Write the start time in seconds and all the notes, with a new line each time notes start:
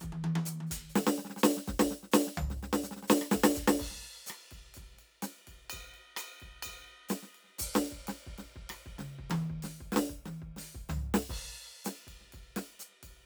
0.01 kick, hi-hat pedal, high tom
0.10 kick, high tom
0.25 high tom
0.36 high tom
0.46 hi-hat pedal, high tom
0.61 high tom
0.67 kick, hi-hat pedal
0.72 closed hi-hat
0.90 hi-hat pedal
0.96 snare
1.07 snare
1.14 hi-hat pedal
1.19 snare
1.25 snare
1.30 snare
1.37 snare, hi-hat pedal
1.44 snare
1.58 snare
1.66 kick, snare, hi-hat pedal
1.79 kick, snare
1.91 snare
2.04 snare
2.12 snare, hi-hat pedal
2.27 snare
2.35 kick, hi-hat pedal, floor tom
2.51 snare
2.57 hi-hat pedal
2.63 snare
2.74 snare
2.84 snare, hi-hat pedal
2.92 snare
2.97 snare
3.03 snare
3.08 snare, hi-hat pedal
3.22 cross-stick
3.31 kick, snare, hi-hat pedal
3.41 kick, snare
3.56 kick, closed hi-hat, hi-hat pedal
3.64 kick, snare
3.74 cross-stick
3.80 kick, crash
3.88 kick, snare
3.97 snare
4.02 snare
4.27 cross-stick, hi-hat pedal, ride
4.52 kick, ride
4.58 kick
4.75 kick, hi-hat pedal, ride
4.83 kick
4.94 snare
4.97 snare, ride
5.23 snare, hi-hat pedal, ride
5.48 kick, ride
5.53 kick
5.70 kick, hi-hat pedal, ride bell
5.79 kick
5.95 ride
6.17 cross-stick, hi-hat pedal, ride bell
6.41 kick, ride
6.48 kick
6.63 kick, hi-hat pedal, ride bell
6.72 kick
6.87 ride
7.09 snare, hi-hat pedal, ride
7.23 snare
7.35 ride
7.45 snare
7.48 snare
7.59 kick, hi-hat pedal
7.67 kick
7.75 snare, ride
7.92 kick
7.98 kick
8.08 snare, ride
8.27 kick
8.39 snare, ride
8.56 kick
8.70 cross-stick, ride
8.87 kick
8.99 snare, mid tom
9.19 kick
9.30 snare, high tom
9.50 kick
9.63 snare, closed hi-hat
9.81 kick
9.87 kick
9.93 snare
9.97 snare
10.10 kick
10.26 snare, high tom
10.42 kick
10.57 snare, closed hi-hat
10.75 kick
10.90 snare, floor tom
11.15 snare
11.30 kick, crash
11.85 snare, hi-hat pedal, ride
12.08 kick, ride
12.21 snare
12.26 snare
12.31 kick, snare, ride
12.57 snare, ride
12.80 snare, hi-hat pedal
12.88 snare
12.91 snare
13.04 kick, ride